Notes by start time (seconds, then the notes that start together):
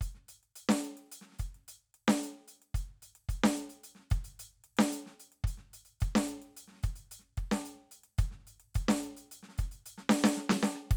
0.01 closed hi-hat, kick
0.15 snare
0.26 snare
0.28 closed hi-hat, snare
0.43 closed hi-hat
0.56 closed hi-hat
0.69 snare
0.83 closed hi-hat
0.97 closed hi-hat
1.12 closed hi-hat
1.21 snare
1.26 snare
1.30 snare
1.32 snare
1.38 closed hi-hat, kick, snare
1.42 snare
1.46 snare
1.49 snare
1.52 snare, closed hi-hat
1.55 snare
1.59 snare
1.68 closed hi-hat
1.94 closed hi-hat
2.08 snare, closed hi-hat
2.23 closed hi-hat
2.48 closed hi-hat
2.62 closed hi-hat
2.74 closed hi-hat, kick
2.87 snare
3.02 closed hi-hat, snare
3.15 closed hi-hat
3.29 closed hi-hat, kick
3.44 snare
3.56 closed hi-hat
3.69 closed hi-hat
3.84 closed hi-hat
3.95 snare
3.99 snare
4.10 closed hi-hat, kick
4.24 closed hi-hat, snare
4.39 closed hi-hat
4.64 closed hi-hat
4.77 snare, closed hi-hat
4.92 closed hi-hat
5.06 snare
5.09 snare
5.20 closed hi-hat
5.32 closed hi-hat
5.44 closed hi-hat, kick
5.57 snare
5.61 snare
5.66 snare
5.69 snare
5.73 closed hi-hat
5.85 closed hi-hat
6.00 closed hi-hat, kick
6.15 snare
6.28 closed hi-hat
6.42 closed hi-hat
6.57 closed hi-hat
6.68 snare
6.71 snare
6.74 snare
6.76 snare
6.80 closed hi-hat, kick, snare
6.96 closed hi-hat
7.11 closed hi-hat
7.19 snare
7.37 kick, closed hi-hat
7.51 snare, closed hi-hat
7.65 closed hi-hat
7.74 snare
7.77 snare
7.91 closed hi-hat
8.04 closed hi-hat
8.18 closed hi-hat, kick
8.31 snare
8.39 snare
8.44 closed hi-hat, snare
8.60 closed hi-hat
8.75 closed hi-hat, kick
8.88 snare
9.03 closed hi-hat
9.17 closed hi-hat
9.31 closed hi-hat
9.43 snare
9.49 snare
9.53 snare
9.57 closed hi-hat, kick, snare
9.60 snare
9.64 snare
9.71 closed hi-hat
9.86 closed hi-hat
9.98 snare
10.09 snare
10.24 snare
10.37 snare
10.49 snare
10.63 snare
10.76 cross-stick
10.91 kick, ride